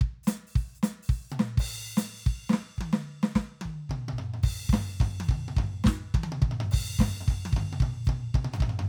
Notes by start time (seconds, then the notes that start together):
0.03 kick
0.24 snare, hi-hat pedal
0.28 closed hi-hat
0.47 open hi-hat
0.56 open hi-hat, kick
0.75 hi-hat pedal
0.83 closed hi-hat, snare
1.03 open hi-hat
1.09 open hi-hat, kick
1.30 hi-hat pedal, mid tom
1.40 snare
1.58 kick, crash
1.90 hi-hat pedal
1.97 closed hi-hat, snare
2.16 open hi-hat
2.25 open hi-hat, kick
2.46 hi-hat pedal
2.50 snare
2.53 snare
2.76 kick, hi-hat pedal
2.81 high tom
2.93 snare
3.23 snare
3.29 hi-hat pedal
3.36 kick, snare
3.61 hi-hat pedal, high tom
3.66 kick
3.90 kick, mid tom
4.09 mid tom
4.13 kick
4.19 floor tom
4.34 floor tom
4.43 kick, crash
4.68 kick, hi-hat pedal
4.73 snare, floor tom
5.00 kick, floor tom
5.20 hi-hat pedal, high tom
5.29 kick, mid tom
5.48 mid tom
5.57 kick, floor tom
5.84 kick, snare, hi-hat pedal
5.87 snare
6.14 kick, high tom
6.24 high tom
6.32 mid tom
6.42 kick, mid tom
6.52 floor tom
6.61 floor tom
6.72 kick, crash
6.97 kick, snare, hi-hat pedal
7.02 floor tom
7.21 floor tom
7.28 kick, floor tom
7.46 hi-hat pedal, high tom
7.53 kick, floor tom
7.73 mid tom
7.80 kick, mid tom
8.05 kick, hi-hat pedal
8.09 mid tom
8.35 kick, mid tom
8.45 mid tom
8.53 floor tom, hi-hat pedal
8.61 kick, floor tom
8.70 floor tom
8.79 floor tom